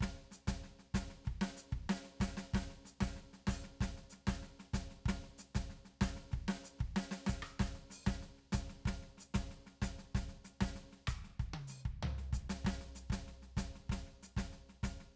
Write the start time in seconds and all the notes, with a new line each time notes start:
0.01 kick, snare
0.16 snare
0.32 snare, hi-hat pedal
0.48 kick, snare
0.64 snare
0.79 snare
0.95 kick, snare, hi-hat pedal
1.10 snare
1.25 kick, snare
1.42 snare
1.57 snare, hi-hat pedal
1.72 kick, snare
1.90 snare
2.04 snare
2.21 kick, snare, hi-hat pedal
2.37 snare
2.54 kick, snare
2.70 snare
2.85 snare, hi-hat pedal
3.01 kick, snare
3.17 snare
3.34 snare
3.47 kick, snare, hi-hat pedal
3.64 snare
3.81 kick, snare
3.97 snare
4.10 snare, hi-hat pedal
4.27 kick, snare
4.43 snare
4.60 snare
4.74 kick, snare, hi-hat pedal
4.91 snare
5.06 kick, snare
5.24 snare
5.39 snare, hi-hat pedal
5.55 kick, snare
5.70 snare
5.85 snare
6.01 kick, snare, hi-hat pedal
6.17 snare
6.32 kick, snare
6.49 snare
6.64 snare, hi-hat pedal
6.79 kick, snare
6.97 snare
7.12 snare
7.27 kick, snare, hi-hat pedal
7.43 cross-stick
7.60 kick, snare
7.75 snare
7.91 snare, hi-hat pedal
8.07 kick, snare
8.22 snare
8.38 snare
8.53 kick, snare, hi-hat pedal
8.70 snare
8.86 kick, snare
9.03 snare
9.18 snare, hi-hat pedal
9.35 kick, snare
9.51 snare
9.67 snare
9.82 kick, snare, hi-hat pedal
9.99 snare
10.15 kick, snare
10.29 snare
10.45 snare, hi-hat pedal
10.61 kick, snare
10.76 snare
10.93 snare
11.08 kick, cross-stick, hi-hat pedal
11.25 snare
11.40 kick, snare
11.54 open hi-hat, high tom
11.68 snare, hi-hat pedal
11.86 kick, snare
12.03 floor tom
12.18 snare
12.33 kick, snare, hi-hat pedal
12.50 snare
12.65 kick, snare
12.81 snare
12.96 snare, hi-hat pedal
13.10 kick, snare
13.28 snare
13.43 snare
13.57 kick, snare, hi-hat pedal
13.76 snare
13.90 kick, snare
14.07 snare
14.23 snare, hi-hat pedal
14.37 kick, snare
14.53 snare
14.69 snare
14.84 kick, snare, hi-hat pedal
15.00 snare